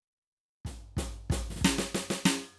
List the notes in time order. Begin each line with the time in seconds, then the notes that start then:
0.65 kick, snare, floor tom
0.97 kick, snare, floor tom
1.30 kick, snare, floor tom
1.50 snare
1.56 snare
1.61 kick, snare
1.78 snare
1.94 snare
2.10 snare
2.25 snare